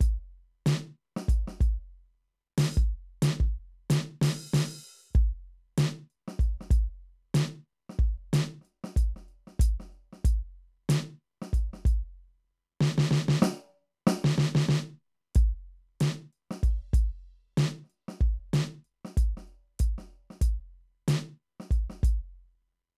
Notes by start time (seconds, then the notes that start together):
0.01 closed hi-hat, kick
0.66 closed hi-hat, snare
1.17 snare
1.29 closed hi-hat, kick
1.48 snare
1.61 closed hi-hat, kick
2.58 open hi-hat, snare
2.75 kick, hi-hat pedal
3.23 closed hi-hat, snare
3.40 kick
3.90 open hi-hat, snare
4.22 open hi-hat, snare
4.54 open hi-hat, snare
5.11 kick, hi-hat pedal
5.15 kick
5.78 closed hi-hat, snare
6.11 closed hi-hat
6.28 snare
6.40 closed hi-hat, kick, snare
6.61 snare
6.71 closed hi-hat, kick
7.35 closed hi-hat, snare
7.90 snare
7.99 kick
8.34 closed hi-hat, snare
8.62 closed hi-hat, snare
8.84 snare
8.97 closed hi-hat, kick
9.16 snare
9.29 closed hi-hat
9.48 snare
9.60 closed hi-hat, kick
9.80 snare
9.90 snare, closed hi-hat
10.13 snare
10.25 closed hi-hat, kick
10.89 closed hi-hat, snare
11.42 snare
11.53 closed hi-hat, kick
11.74 snare
11.86 closed hi-hat, kick
12.81 snare
12.98 snare
13.11 snare
13.29 snare
13.43 snare
14.07 snare
14.25 snare
14.38 snare
14.55 snare
14.69 snare
15.35 closed hi-hat, kick
16.01 closed hi-hat, snare
16.33 closed hi-hat
16.51 snare
16.63 closed hi-hat, kick, crash
16.94 closed hi-hat, kick
17.58 closed hi-hat, snare
17.85 snare
17.90 closed hi-hat
18.09 snare
18.21 kick, closed hi-hat
18.54 closed hi-hat, snare
18.85 closed hi-hat
19.05 snare
19.17 closed hi-hat, kick
19.38 snare
19.48 closed hi-hat
19.80 closed hi-hat, kick
19.99 snare
20.31 snare
20.42 closed hi-hat, kick
21.08 closed hi-hat, snare
21.60 snare
21.71 closed hi-hat, kick
21.90 snare
22.04 closed hi-hat, kick